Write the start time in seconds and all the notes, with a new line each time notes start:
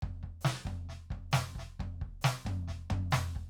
0.02 kick, mid tom
0.23 kick, mid tom
0.41 snare, hi-hat pedal
0.65 kick, mid tom
0.89 snare
1.10 kick, mid tom
1.31 snare, hi-hat pedal, mid tom
1.55 kick, snare
1.79 kick, mid tom
2.01 kick, mid tom
2.21 snare, hi-hat pedal
2.45 kick, mid tom
2.68 kick, snare
2.90 kick, mid tom
3.11 snare, hi-hat pedal, mid tom
3.35 kick, floor tom